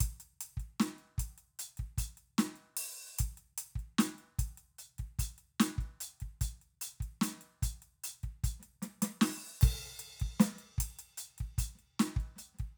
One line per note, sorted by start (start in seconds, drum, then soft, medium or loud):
0.01 kick medium
0.01 closed hi-hat loud
0.21 closed hi-hat medium
0.41 closed hi-hat loud
0.58 kick soft
0.58 closed hi-hat soft
0.80 closed hi-hat medium
0.80 snare loud
0.99 closed hi-hat soft
1.19 kick medium
1.19 closed hi-hat medium
1.38 closed hi-hat soft
1.60 closed hi-hat loud
1.78 kick soft
1.78 closed hi-hat soft
1.98 closed hi-hat loud
1.98 kick medium
2.18 closed hi-hat soft
2.39 closed hi-hat loud
2.39 snare loud
2.56 closed hi-hat soft
2.77 open hi-hat loud
3.18 kick medium
3.18 closed hi-hat loud
3.18 hi-hat pedal medium
3.38 closed hi-hat soft
3.58 closed hi-hat loud
3.76 kick soft
3.76 closed hi-hat soft
3.99 closed hi-hat loud
3.99 snare loud
4.19 closed hi-hat soft
4.39 kick medium
4.39 closed hi-hat medium
4.58 closed hi-hat soft
4.79 closed hi-hat medium
4.99 kick soft
4.99 closed hi-hat soft
5.19 closed hi-hat loud
5.19 kick medium
5.39 closed hi-hat soft
5.60 closed hi-hat loud
5.60 snare loud
5.79 kick medium
5.79 closed hi-hat soft
6.01 closed hi-hat loud
6.21 kick soft
6.21 closed hi-hat soft
6.42 closed hi-hat loud
6.42 kick medium
6.62 closed hi-hat soft
6.82 closed hi-hat loud
7.01 kick soft
7.01 closed hi-hat soft
7.22 closed hi-hat loud
7.22 snare loud
7.42 closed hi-hat soft
7.63 closed hi-hat loud
7.63 kick medium
7.83 closed hi-hat soft
8.04 closed hi-hat loud
8.24 kick soft
8.24 closed hi-hat soft
8.44 closed hi-hat loud
8.44 kick medium
8.60 snare soft
8.60 closed hi-hat soft
8.83 snare medium
8.83 closed hi-hat medium
9.03 snare medium
9.03 closed hi-hat loud
9.22 open hi-hat loud
9.22 snare loud
9.62 kick loud
9.62 hi-hat pedal medium
9.62 crash loud
9.79 closed hi-hat soft
10.00 closed hi-hat medium
10.20 kick medium
10.20 closed hi-hat soft
10.40 closed hi-hat loud
10.40 snare loud
10.59 closed hi-hat soft
10.79 kick medium
10.79 closed hi-hat loud
10.99 closed hi-hat medium
11.18 closed hi-hat loud
11.39 kick soft
11.39 closed hi-hat soft
11.59 closed hi-hat loud
11.59 kick medium
11.75 snare soft
11.79 closed hi-hat soft
12.00 closed hi-hat loud
12.00 snare loud
12.17 kick medium
12.17 closed hi-hat soft
12.37 closed hi-hat medium
12.37 snare soft
12.55 snare soft
12.59 kick soft
12.59 closed hi-hat soft